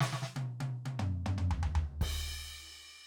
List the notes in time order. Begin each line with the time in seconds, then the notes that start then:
0.00 snare
0.12 snare
0.22 snare
0.36 high tom
0.60 high tom
0.85 high tom
0.99 mid tom
1.26 mid tom
1.38 mid tom
1.51 floor tom
1.63 floor tom
1.75 floor tom
2.01 kick, crash